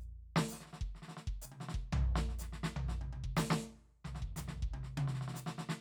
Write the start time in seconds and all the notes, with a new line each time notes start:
0.01 hi-hat pedal
0.37 snare
0.50 snare, hi-hat pedal
0.61 snare
0.66 snare
0.74 snare
0.82 kick
0.96 snare
1.03 snare
1.09 snare
1.18 snare
1.28 kick
1.43 hi-hat pedal, high tom
1.53 high tom
1.61 snare
1.69 snare
1.75 kick
1.93 floor tom
2.16 snare
2.30 snare
2.40 snare, hi-hat pedal
2.53 snare
2.64 snare
2.77 floor tom
2.89 snare
3.02 high tom
3.14 high tom
3.25 kick
3.37 snare, hi-hat pedal
3.51 snare
4.05 snare, floor tom
4.16 snare, floor tom
4.23 kick
4.37 snare, floor tom, hi-hat pedal
4.49 snare, floor tom
4.63 kick
4.74 high tom
4.84 snare
4.98 high tom
5.08 snare
5.15 snare
5.22 snare
5.29 snare
5.35 snare, hi-hat pedal
5.47 snare
5.59 snare
5.70 snare